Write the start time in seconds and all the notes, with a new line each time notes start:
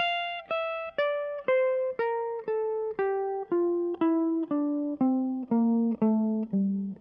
0.00 F5
0.51 E5
0.99 D5
1.48 C5
1.99 A#4
2.48 A4
2.99 G4
3.52 F4
4.02 E4
4.51 D4
5.01 C4
5.52 A#3
6.02 A3
6.54 G3